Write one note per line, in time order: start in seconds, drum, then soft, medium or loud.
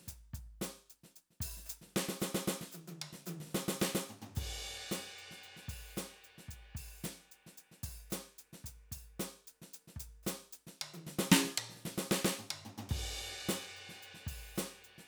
0.01 snare soft
0.04 kick soft
0.04 snare soft
0.08 snare soft
0.08 closed hi-hat loud
0.34 kick soft
0.34 closed hi-hat medium
0.61 snare medium
0.61 closed hi-hat loud
0.90 closed hi-hat medium
1.04 snare soft
1.16 closed hi-hat medium
1.31 snare soft
1.41 kick soft
1.41 open hi-hat loud
1.57 snare soft
1.66 closed hi-hat loud
1.66 hi-hat pedal medium
1.81 snare soft
1.86 snare soft
1.91 snare soft
1.96 snare loud
2.09 snare medium
2.20 snare loud
2.20 hi-hat pedal medium
2.35 snare loud
2.48 snare loud
2.61 snare medium
2.72 hi-hat pedal medium
2.72 high tom medium
2.88 high tom medium
3.02 high tom medium
3.13 snare soft
3.26 hi-hat pedal medium
3.26 high tom loud
3.40 snare soft
3.45 snare soft
3.49 snare soft
3.55 snare loud
3.68 snare loud
3.80 snare loud
3.80 hi-hat pedal medium
3.95 snare loud
4.09 floor tom medium
4.22 floor tom medium
4.35 kick soft
4.35 hi-hat pedal medium
4.35 ride loud
4.91 snare medium
4.91 closed hi-hat medium
5.18 closed hi-hat soft
5.31 snare soft
5.43 closed hi-hat soft
5.57 snare soft
5.68 kick soft
5.68 open hi-hat medium
5.96 snare medium
5.96 closed hi-hat medium
5.96 hi-hat pedal medium
6.24 closed hi-hat soft
6.38 snare soft
6.48 kick soft
6.48 closed hi-hat medium
6.75 kick soft
6.75 open hi-hat medium
7.04 snare medium
7.04 closed hi-hat medium
7.04 hi-hat pedal medium
7.31 closed hi-hat medium
7.46 snare soft
7.57 closed hi-hat medium
7.71 snare soft
7.83 kick soft
7.83 open hi-hat medium
8.10 snare medium
8.10 closed hi-hat loud
8.10 hi-hat pedal medium
8.38 closed hi-hat medium
8.53 snare soft
8.64 kick soft
8.64 closed hi-hat medium
8.92 kick soft
8.92 open hi-hat medium
9.20 snare medium
9.20 closed hi-hat loud
9.20 hi-hat pedal soft
9.47 closed hi-hat medium
9.62 snare soft
9.73 closed hi-hat medium
9.88 snare soft
9.96 kick soft
9.96 closed hi-hat loud
10.23 snare medium
10.23 hi-hat pedal soft
10.27 closed hi-hat loud
10.53 closed hi-hat medium
10.67 snare soft
10.81 high tom loud
10.94 high tom medium
11.07 snare medium
11.19 snare loud
11.32 snare loud
11.45 snare soft
11.58 mid tom loud
11.70 snare soft
11.75 snare soft
11.79 snare soft
11.85 snare medium
11.98 snare medium
12.11 snare loud
12.25 snare loud
12.39 floor tom medium
12.51 high tom loud
12.65 floor tom medium
12.78 floor tom medium
12.89 kick medium
12.89 ride loud
13.49 snare loud
13.49 closed hi-hat loud
13.76 closed hi-hat soft
13.89 snare soft
14.03 closed hi-hat medium
14.14 snare soft
14.27 kick soft
14.27 open hi-hat medium
14.55 snare medium
14.55 closed hi-hat loud
14.55 hi-hat pedal medium
14.84 closed hi-hat medium
14.98 snare soft